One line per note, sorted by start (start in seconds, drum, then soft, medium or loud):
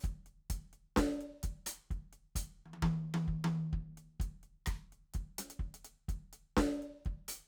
0.01 kick medium
0.01 snare soft
0.01 hi-hat pedal medium
0.05 closed hi-hat medium
0.27 closed hi-hat soft
0.51 kick medium
0.51 closed hi-hat medium
0.74 closed hi-hat soft
0.97 kick medium
0.97 snare loud
0.97 closed hi-hat medium
1.21 closed hi-hat soft
1.44 kick medium
1.44 closed hi-hat medium
1.67 closed hi-hat loud
1.67 cross-stick medium
1.91 kick medium
1.91 closed hi-hat soft
2.13 closed hi-hat soft
2.36 closed hi-hat loud
2.36 kick medium
2.66 high tom soft
2.74 high tom medium
2.83 kick medium
2.83 high tom loud
3.15 high tom loud
3.28 kick medium
3.45 high tom loud
3.73 kick medium
3.98 closed hi-hat soft
4.21 kick medium
4.21 closed hi-hat medium
4.44 closed hi-hat soft
4.67 kick medium
4.67 cross-stick medium
4.67 closed hi-hat medium
4.93 closed hi-hat soft
5.14 kick medium
5.14 closed hi-hat medium
5.39 snare soft
5.39 closed hi-hat loud
5.51 closed hi-hat medium
5.60 kick soft
5.75 closed hi-hat medium
5.85 closed hi-hat medium
6.09 kick medium
6.09 closed hi-hat medium
6.34 closed hi-hat medium
6.57 kick medium
6.57 snare loud
6.57 closed hi-hat medium
6.83 closed hi-hat soft
7.06 kick medium
7.06 closed hi-hat soft
7.29 open hi-hat loud